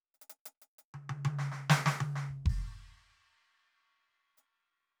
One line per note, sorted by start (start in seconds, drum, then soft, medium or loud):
0.14 closed hi-hat soft
0.21 closed hi-hat medium
0.30 closed hi-hat medium
0.46 closed hi-hat loud
0.62 closed hi-hat medium
0.79 closed hi-hat medium
0.94 high tom medium
1.09 high tom medium
1.25 high tom loud
1.39 snare medium
1.52 snare soft
1.70 snare loud
1.86 snare medium
2.00 high tom loud
2.16 snare medium
2.29 kick soft
2.46 kick medium
2.46 crash soft
4.37 hi-hat pedal soft